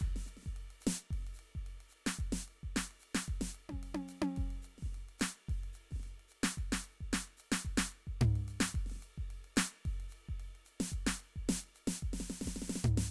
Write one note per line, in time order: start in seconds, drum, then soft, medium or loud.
0.01 kick soft
0.01 ride medium
0.07 kick soft
0.16 snare soft
0.26 snare soft
0.26 hi-hat pedal soft
0.26 ride medium
0.37 snare soft
0.43 kick soft
0.43 snare soft
0.47 snare soft
0.52 snare soft
0.52 ride medium
0.70 ride medium
0.80 hi-hat pedal medium
0.80 ride medium
0.87 snare medium
1.11 kick soft
1.11 ride medium
1.15 snare soft
1.19 snare soft
1.22 snare soft
1.24 snare soft
1.24 ride medium
1.34 hi-hat pedal soft
1.39 ride medium
1.55 kick soft
1.66 ride medium
1.80 ride medium
1.89 hi-hat pedal soft
1.89 ride soft
2.06 snare medium
2.19 kick soft
2.19 ride medium
2.26 kick soft
2.32 snare medium
2.42 hi-hat pedal soft
2.48 ride medium
2.63 kick soft
2.76 snare medium
2.76 ride medium
2.91 ride medium
2.99 hi-hat pedal soft
2.99 ride medium
3.15 snare medium
3.28 kick soft
3.28 ride medium
3.41 snare medium
3.52 hi-hat pedal soft
3.52 ride medium
3.69 kick soft
3.69 high tom medium
3.83 ride medium
3.94 high tom medium
4.08 hi-hat pedal medium
4.08 ride medium
4.22 high tom loud
4.36 kick soft
4.36 ride medium
4.51 ride soft
4.62 hi-hat pedal soft
4.62 ride medium
4.78 snare soft
4.82 kick soft
4.82 snare soft
4.92 snare soft
4.92 ride medium
4.97 snare soft
5.09 ride soft
5.18 snare medium
5.18 hi-hat pedal medium
5.18 ride medium
5.49 kick soft
5.49 snare soft
5.49 ride medium
5.56 kick soft
5.64 ride soft
5.73 hi-hat pedal soft
5.73 ride medium
5.91 kick soft
5.91 snare soft
5.96 kick soft
5.96 snare soft
6.00 snare soft
6.00 ride medium
6.20 ride soft
6.28 hi-hat pedal soft
6.28 ride medium
6.43 snare medium
6.57 kick soft
6.57 ride medium
6.72 snare medium
6.81 hi-hat pedal soft
6.81 ride medium
7.01 kick soft
7.13 snare medium
7.13 ride medium
7.27 ride soft
7.37 hi-hat pedal medium
7.37 ride medium
7.52 snare medium
7.65 kick soft
7.65 ride medium
7.77 snare medium
7.88 hi-hat pedal soft
7.88 ride medium
8.07 kick soft
8.21 floor tom loud
8.21 ride medium
8.36 ride medium
8.47 hi-hat pedal soft
8.47 ride medium
8.60 snare medium
8.74 kick soft
8.74 ride medium
8.86 snare soft
8.86 ride medium
8.91 snare soft
8.96 snare soft
8.99 snare soft
8.99 hi-hat pedal soft
8.99 ride medium
9.18 kick soft
9.30 ride medium
9.44 ride soft
9.56 snare loud
9.56 hi-hat pedal soft
9.56 ride medium
9.85 kick soft
9.85 snare soft
9.85 ride medium
10.00 snare soft
10.00 ride soft
10.09 hi-hat pedal soft
10.09 ride medium
10.29 kick soft
10.40 ride medium
10.55 ride soft
10.65 hi-hat pedal soft
10.65 ride medium
10.80 snare medium
10.92 kick soft
10.92 ride medium
11.06 snare medium
11.16 hi-hat pedal soft
11.16 ride medium
11.36 kick soft
11.49 snare medium
11.49 ride medium
11.64 ride soft
11.74 hi-hat pedal soft
11.74 ride medium
11.87 snare medium
12.02 kick soft
12.02 ride medium
12.13 snare soft
12.20 snare soft
12.27 snare soft
12.27 hi-hat pedal soft
12.41 kick soft
12.41 snare medium
12.47 snare soft
12.56 snare soft
12.62 snare soft
12.68 snare soft
12.68 snare medium
12.75 snare soft
12.84 hi-hat pedal soft
12.84 floor tom loud
12.97 snare medium